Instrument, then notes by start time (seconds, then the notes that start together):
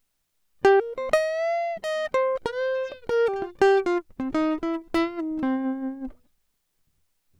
acoustic guitar
0.65 G4
0.80 A#4
0.99 C5
1.14 D#5
1.31 E5
1.84 D#5
2.15 C5
2.46 B4 C5
3.10 A#4
3.27 G4
3.43 F4
3.62 G4
3.87 F4
4.36 D#4
4.64 E4
4.95 E4
5.20 D#4
5.44 C4